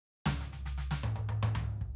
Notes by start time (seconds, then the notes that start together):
0.26 snare, floor tom
0.41 snare
0.52 snare
0.66 snare
0.78 snare
0.91 snare
1.03 high tom
1.16 high tom
1.29 high tom
1.43 high tom
1.55 floor tom
1.81 kick